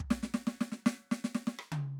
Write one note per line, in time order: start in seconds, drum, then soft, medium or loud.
0.01 kick medium
0.11 snare loud
0.23 snare medium
0.34 snare medium
0.47 snare medium
0.61 snare medium
0.72 snare medium
0.86 snare loud
1.12 snare medium
1.25 snare medium
1.35 snare medium
1.48 snare medium
1.59 high tom medium
1.72 mid tom loud